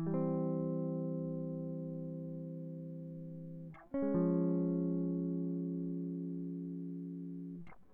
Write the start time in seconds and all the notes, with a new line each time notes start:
0.00 E3
0.07 G3
0.14 C4
3.94 C#4
4.03 G#3
4.15 F3